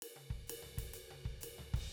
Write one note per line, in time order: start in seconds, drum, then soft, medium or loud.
0.02 hi-hat pedal soft
0.02 ride medium
0.16 high tom soft
0.30 kick soft
0.47 hi-hat pedal soft
0.47 ride loud
0.62 floor tom soft
0.77 kick soft
0.77 ride medium
0.94 hi-hat pedal medium
0.94 ride medium
1.10 high tom soft
1.25 kick soft
1.41 hi-hat pedal medium
1.41 ride medium
1.58 floor tom soft
1.74 kick medium
1.74 ride medium